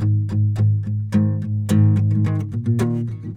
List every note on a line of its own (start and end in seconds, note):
0.00 0.29 G#2
0.00 0.30 D#3
0.30 0.56 G#2
0.30 0.44 E3
0.30 0.56 G#3
0.56 0.84 G#2
0.56 0.82 D#3
0.84 1.13 G#2
0.84 0.97 D#3
1.13 1.42 G#2
1.13 1.43 D#3
1.43 1.69 G#2
1.43 1.56 D#3
1.70 1.98 G#2
1.70 1.98 D#3
1.98 2.16 G#2
1.98 2.12 D#3
2.12 2.26 D#3
2.17 2.53 G#2
2.26 2.45 D#3
2.26 2.44 G#3
2.53 2.66 A#2
2.67 2.80 A#2
2.80 3.03 A#2
3.10 3.22 D#3
3.25 3.35 D#3